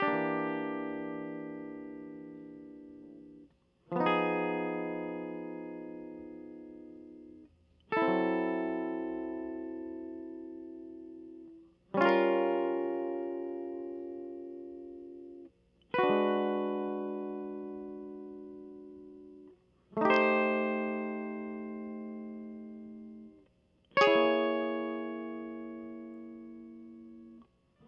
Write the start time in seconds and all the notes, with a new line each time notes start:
0.02 D4
0.08 A#3
0.13 E3
3.92 F3 B3
4.00 D#4
4.06 G#4
7.92 A4
7.97 E4
8.02 C4
8.08 F#3
11.95 G3 C#4
12.01 F4
12.05 A#4
15.94 B4
15.98 F#4
16.03 D4
16.10 G#3
19.97 A3
20.01 D#4
20.05 G4
20.10 C5
23.97 C#5
24.01 G#4
24.07 E4
24.16 A#3